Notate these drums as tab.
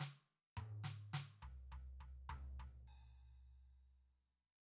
CC |--------|--x-----|
HH |p-------|--------|
SD |o--go---|--------|
T1 |--o-----|--------|
FT |-----ogg|og------|